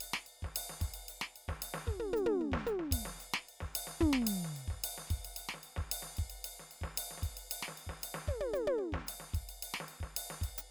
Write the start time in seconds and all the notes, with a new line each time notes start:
0.01 hi-hat pedal, ride bell
0.14 snare
0.27 ride
0.43 kick, snare
0.55 hi-hat pedal, ride bell
0.70 snare
0.81 kick, snare, ride
0.88 kick
0.94 ride
1.09 hi-hat pedal, ride bell
1.22 snare
1.36 ride
1.49 kick, snare
1.62 hi-hat pedal, ride bell
1.74 snare
1.87 kick, mid tom
1.94 kick
2.00 mid tom
2.13 hi-hat pedal, mid tom
2.26 mid tom
2.41 mid tom
2.52 kick, snare
2.67 hi-hat pedal, mid tom
2.80 snare
2.92 kick, ride bell
2.98 kick
3.06 snare
3.21 hi-hat pedal, ride
3.34 snare
3.49 ride
3.61 kick, snare
3.75 hi-hat pedal, ride bell
3.87 snare
4.00 kick, floor tom
4.09 kick
4.13 snare
4.22 snare
4.27 hi-hat pedal, ride bell
4.45 snare
4.57 ride
4.68 kick, snare
4.74 kick
4.84 hi-hat pedal, ride bell
4.98 snare
5.08 kick, snare, ride
5.17 kick, snare
5.25 snare, ride
5.37 hi-hat pedal, ride bell
5.49 snare
5.54 snare
5.64 ride
5.77 kick, snare
5.92 hi-hat pedal, ride bell
6.03 snare
6.17 kick, ride
6.25 kick
6.30 ride bell
6.45 hi-hat pedal, ride
6.60 snare
6.71 ride
6.82 kick, snare
6.97 hi-hat pedal, ride bell
7.11 snare
7.18 snare
7.23 kick, ride
7.35 snare, ride
7.50 hi-hat pedal, ride bell
7.63 snare
7.68 snare
7.78 ride
7.87 kick, snare
8.02 hi-hat pedal, ride
8.15 snare
8.28 kick, high tom
8.41 open hi-hat, high tom
8.54 hi-hat pedal, high tom
8.67 high tom
8.78 high tom
8.93 kick, snare
8.98 kick
9.07 hi-hat pedal, ride bell
9.20 snare
9.30 snare
9.34 kick, ride
9.41 kick
9.49 ride
9.63 hi-hat pedal, ride
9.74 snare
9.81 snare
9.89 ride
10.01 kick, snare
10.17 hi-hat pedal, ride bell
10.31 snare
10.42 kick, ride
10.48 kick
10.58 closed hi-hat